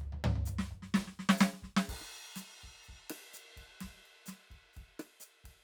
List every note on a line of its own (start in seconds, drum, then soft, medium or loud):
0.01 kick soft
0.01 floor tom soft
0.08 kick soft
0.12 floor tom medium
0.24 floor tom loud
0.36 floor tom medium
0.45 floor tom medium
0.45 hi-hat pedal medium
0.59 snare medium
0.71 kick soft
0.71 floor tom soft
0.76 kick soft
0.82 snare soft
0.94 kick soft
0.94 snare loud
1.02 kick soft
1.07 snare soft
1.19 snare medium
1.29 snare loud
1.37 snare loud
1.37 hi-hat pedal medium
1.53 snare soft
1.62 kick soft
1.62 snare soft
1.67 kick soft
1.77 snare loud
1.84 hi-hat pedal soft
1.88 kick soft
1.88 crash medium
1.94 kick soft
2.01 cross-stick soft
2.36 snare medium
2.36 hi-hat pedal medium
2.36 ride medium
2.62 kick soft
2.62 ride soft
2.83 hi-hat pedal soft
2.87 kick soft
2.87 ride soft
2.93 kick soft
3.10 cross-stick medium
3.10 ride loud
3.33 hi-hat pedal medium
3.33 ride soft
3.56 kick soft
3.56 ride soft
3.61 kick soft
3.81 kick soft
3.81 snare medium
3.81 ride medium
3.88 kick soft
3.97 snare soft
4.06 ride soft
4.26 snare soft
4.26 hi-hat pedal medium
4.26 ride medium
4.50 kick soft
4.50 ride soft
4.73 kick soft
4.73 hi-hat pedal soft
4.73 ride soft
4.81 kick soft
4.99 cross-stick medium
4.99 ride medium
5.20 hi-hat pedal medium
5.20 ride soft
5.44 kick soft
5.44 ride medium